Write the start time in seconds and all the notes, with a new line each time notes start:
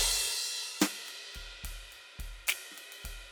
0.01 kick
0.46 snare, ride
0.81 snare, hi-hat pedal, ride
1.06 hi-hat pedal, ride
1.33 kick, snare, hi-hat pedal, ride
1.64 kick, ride
1.91 hi-hat pedal, ride
2.16 kick, snare
2.21 ride
2.48 snare, hi-hat pedal, ride
2.72 snare, hi-hat pedal
2.78 snare, ride
2.82 snare
2.93 ride
3.02 kick, hi-hat pedal, ride